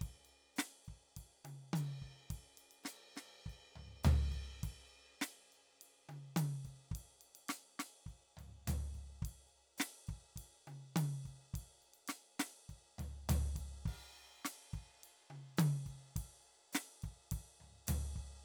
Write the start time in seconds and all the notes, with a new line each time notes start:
0.01 kick, ride
0.25 ride
0.56 snare, hi-hat pedal, ride
0.85 kick, ride
1.16 kick, ride
1.44 high tom, ride
1.73 hi-hat pedal, high tom, ride
2.02 kick
2.30 kick, ride
2.57 ride
2.71 ride
2.84 snare, hi-hat pedal, ride
3.16 snare, ride
3.46 kick, ride
3.75 floor tom
4.03 floor tom, hi-hat pedal, ride
4.31 kick, ride
4.63 kick, ride
4.87 ride
5.21 snare, hi-hat pedal, ride
5.52 ride
5.81 ride
6.09 high tom, ride
6.36 hi-hat pedal, high tom, ride
6.65 kick, ride
6.91 kick, ride
7.21 ride
7.35 ride
7.48 snare, hi-hat pedal, ride
7.79 snare, ride
8.06 kick, ride
8.37 floor tom, ride
8.67 floor tom, hi-hat pedal, ride
8.94 kick, ride
9.22 kick, ride
9.47 ride
9.78 snare, hi-hat pedal, ride
10.07 kick, ride
10.36 kick, ride
10.67 high tom, ride
10.96 hi-hat pedal, high tom, ride
11.25 kick, ride
11.54 kick, ride
11.82 ride
11.94 ride
12.08 snare, hi-hat pedal, ride
12.39 snare, ride
12.69 kick, ride
12.98 floor tom, ride
13.29 floor tom, hi-hat pedal, ride
13.55 kick, ride
13.85 kick, crash
14.45 snare, hi-hat pedal, ride
14.73 kick, ride
15.03 ride
15.30 high tom
15.57 hi-hat pedal, high tom, ride
15.86 kick, ride
16.16 kick, ride
16.42 ride
16.72 snare, hi-hat pedal, ride
17.02 kick, ride
17.31 kick, ride
17.60 floor tom
17.87 floor tom, hi-hat pedal, ride
18.15 kick